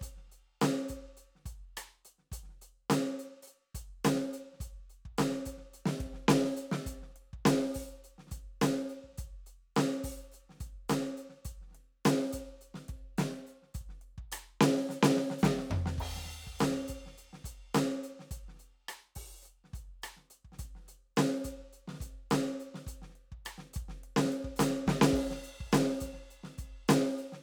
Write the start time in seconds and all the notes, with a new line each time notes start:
0.01 closed hi-hat, kick
0.17 snare
0.28 closed hi-hat, snare
0.61 closed hi-hat, snare
0.88 closed hi-hat, kick
1.17 closed hi-hat
1.35 snare
1.39 snare
1.45 closed hi-hat, kick, snare
1.77 closed hi-hat, cross-stick
2.05 closed hi-hat
2.18 snare
2.32 closed hi-hat, kick
2.43 snare
2.49 snare
2.61 closed hi-hat
2.90 closed hi-hat, snare
3.19 closed hi-hat
3.42 hi-hat pedal
3.47 closed hi-hat
3.74 closed hi-hat, kick
4.04 closed hi-hat, snare
4.15 snare
4.33 closed hi-hat
4.53 snare
4.60 closed hi-hat, kick
4.80 kick
4.90 closed hi-hat
5.05 kick
5.18 closed hi-hat, snare
5.30 snare
5.45 open hi-hat, kick
5.57 snare
5.73 closed hi-hat
5.86 snare
6.00 kick, closed hi-hat
6.06 kick
6.13 snare
6.28 snare
6.44 snare
6.57 closed hi-hat
6.71 snare
6.86 closed hi-hat, kick
7.02 snare
7.09 snare
7.16 closed hi-hat
7.33 kick
7.45 open hi-hat, snare
7.74 open hi-hat, kick
7.83 snare
8.04 closed hi-hat
8.18 snare
8.27 snare
8.31 closed hi-hat, kick
8.37 kick
8.61 open hi-hat, snare
8.89 closed hi-hat
9.04 kick
9.12 snare
9.18 closed hi-hat, kick
9.27 kick
9.46 closed hi-hat
9.76 closed hi-hat, snare
10.04 open hi-hat, kick
10.09 kick
10.17 snare
10.31 closed hi-hat, hi-hat pedal
10.49 snare
10.54 snare
10.58 closed hi-hat, kick, snare
10.66 kick
10.88 closed hi-hat, snare, hi-hat pedal
11.01 snare
11.17 closed hi-hat
11.29 snare
11.45 closed hi-hat, kick
11.61 snare
11.67 snare
11.71 snare, closed hi-hat
12.05 closed hi-hat, snare
12.33 closed hi-hat, kick
12.61 closed hi-hat
12.74 snare
12.88 kick, closed hi-hat
13.18 closed hi-hat, snare
13.31 snare
13.46 open hi-hat, hi-hat pedal
13.62 snare
13.74 closed hi-hat, kick
13.81 kick
13.89 snare
14.01 closed hi-hat
14.18 kick
14.32 closed hi-hat, cross-stick
14.61 snare
14.76 snare
14.89 snare, hi-hat pedal
15.03 snare
15.09 snare
15.17 snare
15.30 snare
15.39 hi-hat pedal
15.43 kick, snare
15.58 snare
15.70 kick, mid tom
15.86 snare
15.98 kick, crash
16.07 kick
16.16 snare
16.25 snare
16.30 closed hi-hat
16.47 kick
16.59 open hi-hat, snare
16.70 snare
16.88 closed hi-hat, kick
17.06 snare
17.18 closed hi-hat
17.33 snare
17.43 closed hi-hat, kick, snare
17.74 closed hi-hat, snare
18.03 closed hi-hat
18.19 snare
18.31 closed hi-hat, kick
18.36 kick
18.48 snare
18.54 snare
18.59 closed hi-hat
18.88 closed hi-hat, cross-stick
19.15 open hi-hat, kick
19.42 closed hi-hat, hi-hat pedal
19.64 snare
19.70 kick, snare
19.75 closed hi-hat
20.02 closed hi-hat, cross-stick, hi-hat pedal
20.16 snare
20.30 closed hi-hat
20.44 kick
20.52 snare
20.57 closed hi-hat, kick, snare
20.64 kick
20.75 snare
20.79 snare
20.85 snare
20.87 closed hi-hat, snare
21.16 closed hi-hat, snare
21.30 snare
21.44 closed hi-hat, kick
21.59 snare
21.73 closed hi-hat
21.88 snare
21.93 snare
22.00 closed hi-hat, kick
22.06 kick
22.31 closed hi-hat, snare
22.45 snare
22.60 closed hi-hat
22.74 snare
22.86 closed hi-hat, kick
23.02 snare
23.10 snare
23.15 closed hi-hat
23.32 kick
23.45 open hi-hat, cross-stick
23.58 snare
23.73 closed hi-hat, kick
23.82 kick
23.88 snare
24.03 closed hi-hat
24.16 snare
24.25 snare
24.32 closed hi-hat
24.44 kick
24.56 closed hi-hat, snare, hi-hat pedal
24.69 snare
24.87 kick, snare
25.01 snare
25.06 hi-hat pedal
25.13 kick, crash
25.19 kick
25.30 snare
25.40 closed hi-hat, snare
25.60 kick
25.72 open hi-hat, snare
25.81 snare
26.00 closed hi-hat, kick, snare
26.13 snare
26.30 closed hi-hat
26.43 snare
26.58 closed hi-hat, kick
26.64 kick
26.88 open hi-hat, snare, hi-hat pedal
26.99 snare
27.18 closed hi-hat
27.32 snare